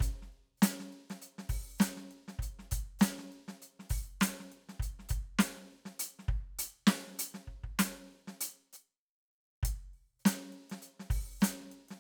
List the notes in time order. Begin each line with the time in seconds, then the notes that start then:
0.01 closed hi-hat, kick
0.23 snare
0.33 closed hi-hat
0.58 hi-hat pedal
0.63 closed hi-hat, snare
0.80 snare
0.93 closed hi-hat
1.10 snare, closed hi-hat
1.22 closed hi-hat
1.39 snare
1.50 open hi-hat, kick
1.79 closed hi-hat, snare, hi-hat pedal
1.97 snare
2.12 closed hi-hat
2.29 snare, closed hi-hat
2.39 closed hi-hat, kick
2.60 snare
2.72 open hi-hat, kick
3.00 closed hi-hat, snare, hi-hat pedal
3.19 snare
3.33 closed hi-hat
3.49 snare, closed hi-hat
3.62 closed hi-hat
3.80 snare
3.90 open hi-hat, kick
4.21 closed hi-hat, snare, hi-hat pedal
4.40 snare
4.52 closed hi-hat
4.69 snare, closed hi-hat
4.80 closed hi-hat, kick
5.00 snare
5.09 closed hi-hat, kick
5.39 closed hi-hat, snare
5.57 snare
5.86 snare
6.00 closed hi-hat
6.20 snare
6.29 kick, closed hi-hat
6.57 closed hi-hat, snare
6.88 snare, closed hi-hat
7.08 snare
7.20 closed hi-hat
7.35 snare
7.48 kick, closed hi-hat
7.64 kick
7.79 closed hi-hat, snare
8.12 closed hi-hat
8.28 snare
8.41 closed hi-hat
8.73 hi-hat pedal
9.63 kick, closed hi-hat
9.94 open hi-hat
10.20 hi-hat pedal
10.26 closed hi-hat, snare
10.53 closed hi-hat
10.70 snare, closed hi-hat
10.83 closed hi-hat
11.00 snare
11.11 open hi-hat, kick
11.41 closed hi-hat, snare, hi-hat pedal
11.61 snare
11.65 snare
11.72 closed hi-hat
11.89 snare, closed hi-hat